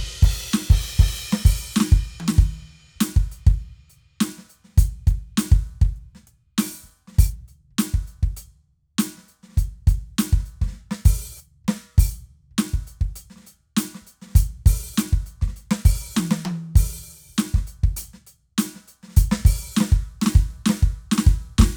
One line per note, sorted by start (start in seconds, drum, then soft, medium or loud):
0.23 kick loud
0.23 hi-hat pedal medium
0.23 crash loud
0.52 snare loud
0.52 hi-hat pedal medium
0.71 kick loud
0.71 crash loud
0.83 hi-hat pedal medium
1.00 kick loud
1.00 crash loud
1.15 hi-hat pedal loud
1.33 snare loud
1.46 open hi-hat loud
1.46 kick loud
1.77 snare loud
1.77 hi-hat pedal medium
1.81 snare loud
1.93 kick loud
2.04 hi-hat pedal soft
2.21 high tom loud
2.29 snare loud
2.39 kick loud
2.97 kick soft
3.02 closed hi-hat loud
3.02 snare loud
3.17 kick loud
3.33 closed hi-hat medium
3.48 kick loud
3.91 closed hi-hat soft
4.21 closed hi-hat medium
4.21 snare loud
4.39 snare soft
4.45 snare soft
4.50 closed hi-hat soft
4.65 snare soft
4.69 snare soft
4.73 snare soft
4.76 closed hi-hat loud
4.76 kick loud
4.76 snare soft
5.08 kick loud
5.08 closed hi-hat medium
5.38 closed hi-hat loud
5.38 snare loud
5.53 kick loud
5.68 closed hi-hat soft
5.82 kick loud
5.97 closed hi-hat soft
6.16 snare soft
6.20 snare soft
6.28 closed hi-hat soft
6.59 open hi-hat loud
6.59 snare loud
6.84 kick soft
6.84 snare soft
7.08 snare soft
7.13 snare soft
7.16 snare soft
7.19 open hi-hat loud
7.19 kick loud
7.19 snare soft
7.19 hi-hat pedal soft
7.49 closed hi-hat soft
7.72 kick soft
7.79 closed hi-hat loud
7.79 snare loud
7.95 kick medium
8.08 closed hi-hat soft
8.24 kick medium
8.24 crash soft
8.38 closed hi-hat medium
8.99 closed hi-hat loud
8.99 snare loud
9.19 snare soft
9.24 snare soft
9.29 closed hi-hat soft
9.44 snare soft
9.49 snare soft
9.53 snare soft
9.56 closed hi-hat medium
9.56 kick medium
9.56 snare soft
9.88 closed hi-hat medium
9.88 kick loud
10.19 closed hi-hat loud
10.19 snare loud
10.34 kick loud
10.39 snare soft
10.46 closed hi-hat soft
10.62 kick medium
10.62 snare soft
10.62 crash soft
10.68 snare soft
10.71 snare soft
10.73 snare soft
10.78 closed hi-hat soft
10.92 snare medium
11.06 open hi-hat loud
11.06 kick loud
11.38 hi-hat pedal medium
11.65 kick soft
11.65 snare loud
11.99 open hi-hat loud
11.99 kick loud
12.52 kick soft
12.59 open hi-hat loud
12.59 snare loud
12.59 hi-hat pedal medium
12.74 kick medium
12.88 closed hi-hat soft
13.02 kick medium
13.02 crash soft
13.06 ride soft
13.17 closed hi-hat medium
13.31 snare soft
13.37 snare soft
13.41 snare soft
13.44 snare soft
13.47 closed hi-hat soft
13.47 snare soft
13.78 closed hi-hat loud
13.78 snare loud
13.96 snare soft
14.02 kick soft
14.02 snare soft
14.08 closed hi-hat soft
14.23 snare soft
14.27 snare soft
14.30 snare soft
14.35 closed hi-hat loud
14.35 kick loud
14.35 snare soft
14.67 open hi-hat loud
14.67 kick loud
14.99 open hi-hat loud
14.99 snare loud
14.99 hi-hat pedal soft
15.14 kick medium
15.27 closed hi-hat soft
15.42 kick medium
15.42 snare soft
15.49 snare soft
15.53 snare soft
15.57 closed hi-hat soft
15.57 snare soft
15.72 snare loud
15.86 open hi-hat loud
15.86 kick loud
16.17 snare loud
16.17 hi-hat pedal medium
16.17 high tom loud
16.32 snare loud
16.46 high tom loud
16.77 open hi-hat loud
16.77 kick loud
17.30 kick soft
17.39 open hi-hat loud
17.39 snare loud
17.39 hi-hat pedal medium
17.55 kick medium
17.55 snare soft
17.68 closed hi-hat soft
17.84 kick loud
17.84 crash soft
17.98 closed hi-hat loud
18.14 snare soft
18.28 closed hi-hat medium
18.59 closed hi-hat loud
18.59 snare loud
18.76 snare soft
18.89 closed hi-hat soft
19.04 snare soft
19.09 snare soft
19.12 snare soft
19.18 closed hi-hat loud
19.18 kick loud
19.32 snare loud
19.46 open hi-hat loud
19.46 kick loud
19.78 snare loud
19.78 hi-hat pedal medium
19.81 snare loud
19.93 kick loud
20.23 snare loud
20.27 snare loud
20.36 kick loud
20.67 snare loud
20.70 snare loud
20.84 kick loud
21.12 snare loud
21.19 snare loud
21.28 kick loud
21.59 kick loud
21.59 snare loud
21.62 snare loud